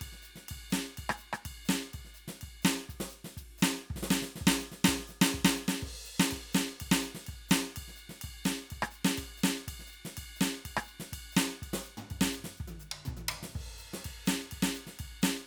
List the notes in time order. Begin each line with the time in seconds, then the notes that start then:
0.01 kick, ride bell
0.07 kick
0.12 snare
0.22 hi-hat pedal, ride
0.36 snare
0.48 kick, ride bell
0.57 kick
0.70 snare, hi-hat pedal
0.97 kick, ride bell
1.09 cross-stick
1.17 hi-hat pedal, ride
1.33 cross-stick
1.45 kick, ride bell
1.51 kick
1.65 snare, hi-hat pedal
1.93 kick, ride bell
2.00 kick
2.05 snare
2.14 hi-hat pedal, ride
2.28 snare
2.41 kick, ride bell
2.62 snare, hi-hat pedal
2.89 kick, ride
3.00 snare
3.10 hi-hat pedal, ride
3.24 snare
3.37 kick, ride
3.42 kick
3.58 hi-hat pedal
3.62 snare
3.90 kick
3.96 kick, snare
4.03 snare
4.10 snare, hi-hat pedal
4.22 snare
4.36 snare
4.41 kick
4.47 snare
4.60 snare, hi-hat pedal
4.72 snare
4.84 kick, snare
4.98 snare
5.07 snare, hi-hat pedal
5.21 snare
5.34 kick, snare
5.40 kick
5.45 snare
5.55 hi-hat pedal
5.68 snare
5.82 kick, crash
5.88 kick
5.93 snare
6.05 hi-hat pedal
6.20 snare
6.31 kick, ride bell
6.53 snare, hi-hat pedal
6.80 kick, ride bell
6.87 kick
6.91 snare
7.01 hi-hat pedal, ride
7.15 snare
7.22 hi-hat pedal
7.27 kick, ride bell
7.34 kick
7.49 snare, hi-hat pedal
7.76 kick, ride bell
7.88 snare
7.96 hi-hat pedal, ride
8.09 snare
8.21 kick, ride bell
8.30 kick
8.44 snare, hi-hat pedal
8.52 snare
8.65 hi-hat pedal
8.70 kick, ride bell
8.78 kick
8.82 cross-stick
8.91 hi-hat pedal, ride
9.05 snare
9.18 kick, ride bell
9.24 kick
9.37 hi-hat pedal
9.44 snare
9.68 kick, ride bell
9.73 kick
9.79 snare
9.87 hi-hat pedal
9.93 ride
10.05 snare
10.17 kick, ride bell
10.36 hi-hat pedal
10.41 snare
10.59 hi-hat pedal
10.65 kick, ride bell
10.71 kick
10.77 cross-stick
10.83 hi-hat pedal
10.88 ride
11.00 snare
11.13 kick, ride bell
11.32 hi-hat pedal
11.37 snare
11.62 kick, ride bell
11.68 kick
11.73 snare
11.83 hi-hat pedal, ride
11.97 floor tom
12.10 kick, ride bell
12.18 kick, snare
12.32 hi-hat pedal, ride
12.44 snare
12.57 kick, ride
12.67 kick, high tom
12.80 hi-hat pedal
12.91 high tom
13.05 kick, mid tom
13.15 kick, high tom
13.28 hi-hat pedal, floor tom
13.43 snare
13.49 snare
13.55 kick, crash
13.66 kick
13.78 hi-hat pedal
13.93 snare
14.05 kick, ride bell
14.25 snare, hi-hat pedal
14.51 kick, ride bell
14.62 snare
14.74 hi-hat pedal, ride
14.87 snare
14.99 kick, ride bell
15.06 kick
15.22 snare, hi-hat pedal